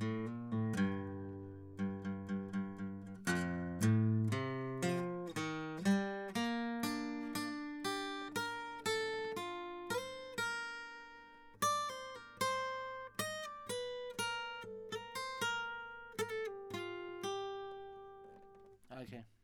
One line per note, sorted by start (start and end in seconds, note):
0.01 0.26 A2
0.28 0.52 A#2
0.53 0.75 A2
0.74 1.79 G2
1.80 2.05 G2
2.06 2.53 G2
2.54 2.78 G2
2.79 3.06 G2
3.08 3.19 G2
3.28 3.83 F2
3.83 4.28 A2
4.29 4.40 F#2
4.29 5.07 C3
4.83 5.34 F3
5.37 5.82 D#3
5.86 6.35 G3
6.36 7.54 A#3
6.84 7.35 D4
7.36 8.33 D4
7.85 8.31 G4
8.36 8.82 A#4
8.86 9.43 A4
9.37 10.01 F4
9.91 10.02 B4
10.03 10.37 C5
10.38 11.57 A#4
11.63 11.90 D5
11.90 12.16 C5
12.16 12.39 A#4
12.41 13.12 C5
13.20 13.43 D#5
13.44 13.70 D5
13.70 14.15 B4
14.19 14.63 A#4
14.63 14.91 A4
14.93 15.23 A#4
15.16 15.48 C5
15.42 16.17 A#4
16.19 16.29 A#4
16.29 16.46 A4
16.46 17.24 G4
16.75 17.31 F4
17.24 18.79 G4